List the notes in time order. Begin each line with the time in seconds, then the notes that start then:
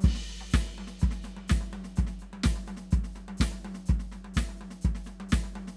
0.01 kick, hi-hat pedal, crash
0.15 snare
0.24 hi-hat pedal
0.30 high tom
0.41 high tom
0.50 kick, snare, hi-hat pedal
0.61 snare
0.67 high tom
0.73 hi-hat pedal
0.78 high tom
0.87 snare
0.99 kick, hi-hat pedal, high tom
1.11 snare
1.22 snare, hi-hat pedal, high tom
1.37 high tom
1.48 kick, snare, hi-hat pedal
1.61 high tom
1.71 hi-hat pedal, high tom
1.84 snare
1.96 kick, hi-hat pedal, high tom
2.07 snare
2.19 hi-hat pedal, high tom
2.33 high tom
2.44 kick, snare, hi-hat pedal
2.56 high tom
2.66 hi-hat pedal, high tom
2.77 snare
2.91 kick, hi-hat pedal, high tom
3.04 snare
3.12 snare, hi-hat pedal, high tom
3.28 high tom
3.37 kick, snare, hi-hat pedal
3.52 high tom
3.59 hi-hat pedal
3.65 high tom
3.75 snare
3.86 kick, hi-hat pedal, high tom
4.00 snare
4.08 snare, hi-hat pedal
4.13 high tom
4.25 high tom
4.34 kick, snare, hi-hat pedal
4.43 cross-stick
4.49 high tom
4.57 hi-hat pedal
4.61 high tom
4.71 snare
4.81 kick, hi-hat pedal, high tom
4.95 snare
5.04 snare, hi-hat pedal, high tom
5.20 high tom
5.29 snare, hi-hat pedal
5.33 kick
5.44 high tom
5.52 hi-hat pedal
5.56 high tom
5.68 snare